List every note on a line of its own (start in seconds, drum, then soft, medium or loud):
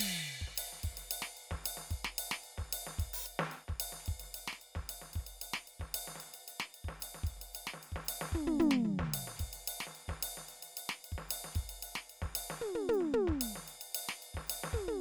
0.01 hi-hat pedal medium
0.01 ride loud
0.28 ride soft
0.42 kick soft
0.48 snare soft
0.56 hi-hat pedal medium
0.56 ride bell loud
0.73 snare soft
0.80 snare soft
0.84 kick soft
0.84 ride medium
0.90 kick soft
0.90 snare soft
0.97 snare soft
0.97 ride medium
1.11 hi-hat pedal medium
1.11 ride bell loud
1.22 snare medium
1.37 ride soft
1.51 kick soft
1.51 snare soft
1.65 hi-hat pedal medium
1.65 ride bell loud
1.78 snare soft
1.91 kick soft
1.91 ride soft
2.05 snare loud
2.19 hi-hat pedal medium
2.19 ride bell loud
2.32 snare loud
2.44 ride soft
2.58 kick soft
2.58 snare soft
2.73 hi-hat pedal medium
2.73 ride bell loud
2.87 snare soft
2.99 kick soft
2.99 ride medium
3.05 kick soft
3.14 open hi-hat loud
3.25 hi-hat pedal medium
3.25 ride bell medium
3.40 snare medium
3.52 ride soft
3.69 kick soft
3.69 snare soft
3.80 hi-hat pedal medium
3.80 ride bell loud
3.93 snare soft
4.00 snare soft
4.06 kick soft
4.06 ride medium
4.14 kick soft
4.20 snare soft
4.20 ride medium
4.24 snare soft
4.35 hi-hat pedal medium
4.35 ride medium
4.48 snare medium
4.53 snare soft
4.62 ride soft
4.76 kick soft
4.76 snare soft
4.81 kick soft
4.90 hi-hat pedal medium
4.90 ride bell medium
5.02 snare soft
5.10 snare soft
5.10 ride medium
5.16 kick soft
5.20 snare soft
5.26 snare soft
5.26 ride medium
5.42 hi-hat pedal medium
5.42 ride medium
5.54 snare loud
5.68 ride soft
5.80 kick soft
5.80 snare soft
5.95 hi-hat pedal medium
5.95 ride bell loud
6.08 snare soft
6.16 snare soft
6.20 ride medium
6.34 ride medium
6.48 hi-hat pedal medium
6.48 ride bell medium
6.60 snare loud
6.75 ride soft
6.85 kick soft
6.89 snare soft
7.00 hi-hat pedal medium
7.00 ride bell medium
7.15 snare soft
7.22 kick soft
7.22 snare soft
7.27 kick soft
7.27 ride soft
7.37 snare soft
7.42 snare soft
7.42 ride medium
7.54 hi-hat pedal medium
7.54 ride medium
7.67 snare medium
7.74 snare soft
7.83 ride soft
7.92 kick soft
7.96 snare soft
8.05 hi-hat pedal medium
8.05 ride loud
8.22 snare medium
8.33 kick soft
8.33 floor tom medium
8.39 kick soft
8.47 floor tom loud
8.59 hi-hat pedal medium
8.59 floor tom loud
8.71 snare loud
8.84 floor tom soft
8.99 kick soft
8.99 snare medium
9.14 hi-hat pedal medium
9.14 ride bell loud
9.28 snare soft
9.37 kick soft
9.37 snare soft
9.37 ride medium
9.46 kick soft
9.52 snare soft
9.52 ride medium
9.56 snare soft
9.68 hi-hat pedal medium
9.68 ride bell loud
9.81 snare medium
9.87 snare soft
9.95 ride soft
10.09 kick soft
10.09 snare soft
10.23 hi-hat pedal medium
10.23 ride bell loud
10.38 snare soft
10.49 ride soft
10.60 snare soft
10.60 ride medium
10.64 snare soft
10.77 hi-hat pedal medium
10.77 ride medium
10.90 snare medium
11.05 ride medium
11.12 kick soft
11.18 snare soft
11.29 hi-hat pedal medium
11.29 ride bell loud
11.45 snare soft
11.53 kick soft
11.53 snare soft
11.53 ride medium
11.63 kick soft
11.69 snare soft
11.69 ride medium
11.83 hi-hat pedal medium
11.83 ride medium
11.96 snare medium
12.10 ride soft
12.22 kick soft
12.22 snare soft
12.35 hi-hat pedal medium
12.35 ride loud
12.50 snare soft
12.61 mid tom medium
12.75 mid tom medium
12.89 mid tom loud
12.94 hi-hat pedal medium
13.01 snare soft
13.14 mid tom loud
13.28 kick soft
13.28 snare soft
13.41 hi-hat pedal medium
13.41 ride loud
13.56 snare soft
13.68 ride medium
13.81 ride medium
13.95 hi-hat pedal medium
13.95 ride bell loud
14.09 snare medium
14.23 ride soft
14.35 kick soft
14.35 snare soft
14.47 hi-hat pedal medium
14.47 ride bell loud
14.64 snare medium
14.73 kick soft
14.73 snare soft
14.73 mid tom medium
14.79 kick soft
14.88 mid tom medium